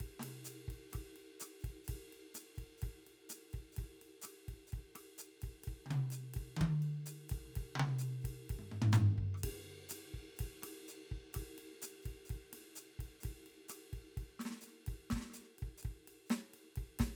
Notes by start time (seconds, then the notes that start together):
0.01 kick, ride
0.06 kick
0.20 snare, mid tom, ride
0.45 hi-hat pedal, ride
0.69 kick, ride
0.74 kick
0.91 cross-stick, snare, hi-hat pedal, ride
0.96 kick
1.01 kick
1.17 ride
1.41 cross-stick, snare, hi-hat pedal, ride
1.61 kick, hi-hat pedal
1.65 ride
1.70 kick
1.85 hi-hat pedal, ride
1.90 kick
1.95 kick
2.13 ride
2.35 snare, hi-hat pedal, ride
2.56 kick, hi-hat pedal, ride
2.63 kick
2.78 hi-hat pedal
2.83 kick, ride
2.89 kick
3.07 ride
3.30 snare, hi-hat pedal, ride
3.51 kick, hi-hat pedal, ride
3.60 kick
3.73 hi-hat pedal
3.77 kick, snare, ride
3.85 kick
4.02 ride
4.22 cross-stick, snare, hi-hat pedal, ride
4.49 kick, ride
4.54 kick
4.68 hi-hat pedal
4.73 kick, ride
4.79 kick
4.96 cross-stick, snare, ride
5.19 hi-hat pedal, ride
5.41 kick, hi-hat pedal, ride
5.49 kick
5.63 hi-hat pedal, ride
5.68 kick
5.74 kick
5.87 mid tom
5.91 mid tom, ride
6.11 hi-hat pedal, ride
6.34 kick, ride
6.43 kick
6.57 high tom
6.61 kick, high tom
6.67 kick
6.83 ride bell
7.06 hi-hat pedal, ride
7.29 kick, hi-hat pedal, ride
7.38 kick
7.46 mid tom
7.56 kick, ride
7.63 kick
7.76 mid tom
7.80 mid tom
7.90 mid tom
7.99 hi-hat pedal, ride
8.22 kick, hi-hat pedal
8.26 ride
8.31 kick
8.50 kick, ride
8.56 kick, floor tom
8.72 floor tom
8.83 floor tom
8.93 hi-hat pedal, floor tom
9.19 kick
9.24 kick
9.35 cross-stick, hi-hat pedal
9.44 kick, ride
9.50 kick
9.90 snare, hi-hat pedal, ride
10.15 kick
10.20 kick
10.37 hi-hat pedal, ride
10.41 kick
10.47 kick
10.63 cross-stick, snare, ride
10.89 hi-hat pedal
11.12 kick, ride
11.18 kick
11.34 kick, cross-stick, snare, hi-hat pedal, ride
11.43 kick
11.59 ride
11.73 snare
11.82 snare, hi-hat pedal, ride
12.03 kick, hi-hat pedal, ride
12.12 kick
12.26 hi-hat pedal
12.30 kick, ride
12.37 kick
12.53 snare, ride
12.76 hi-hat pedal, ride
13.00 kick, ride
13.05 kick
13.21 snare, hi-hat pedal, ride
13.25 kick
13.31 kick
13.47 ride
13.58 snare
13.69 cross-stick, snare, hi-hat pedal, ride
13.94 kick, ride
13.99 kick
14.18 kick, ride
14.23 kick
14.40 snare, ride
14.46 snare
14.51 snare
14.56 snare
14.62 snare, hi-hat pedal, ride
14.68 snare
14.74 snare
14.80 snare
14.84 snare, ride
14.88 kick
14.94 kick
15.11 kick, snare, ride
15.16 kick, snare
15.26 snare
15.31 snare, hi-hat pedal
15.35 snare, ride
15.38 snare
15.42 snare
15.44 snare
15.50 snare
15.59 kick, ride
15.69 kick
15.78 hi-hat pedal
15.84 kick, ride
15.91 kick
16.08 ride
16.27 snare, hi-hat pedal, ride
16.54 ride
16.64 snare
16.76 kick, ride
16.83 kick
17.00 kick, snare, ride